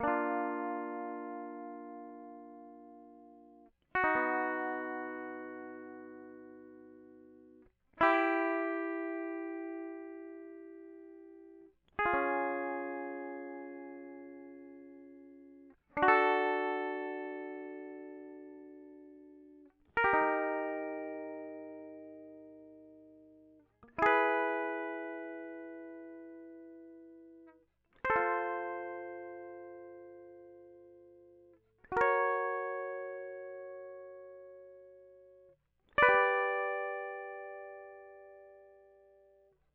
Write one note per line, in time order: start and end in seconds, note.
0.01 3.70 A#3
0.01 3.70 D4
0.09 3.70 F4
3.96 7.62 F#4
4.05 7.65 D#4
4.16 7.69 B3
8.02 11.71 E4
8.02 11.71 G4
12.00 14.97 G#4
12.06 15.76 F4
12.15 15.76 C#4
15.98 19.73 D4
16.03 19.70 F#4
16.09 18.73 A4
19.98 22.93 A#4
20.05 22.77 G4
20.14 23.67 D#4
23.99 27.65 E4
23.99 26.20 G#4
24.07 27.24 B4
28.05 31.42 C5
28.11 30.21 A4
28.17 31.60 F4
31.93 35.54 F#4
31.97 34.31 A#4
32.02 35.54 C#5
35.99 39.28 D5
36.03 38.51 B4
36.10 39.58 G4